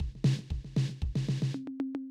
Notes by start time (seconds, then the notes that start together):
0.00 kick, snare
0.15 snare
0.24 snare
0.39 snare
0.50 kick, snare
0.65 snare
0.77 snare
0.89 snare
1.02 kick, snare
1.16 snare
1.29 snare
1.42 snare
1.54 high tom
1.67 high tom
1.80 high tom
1.95 high tom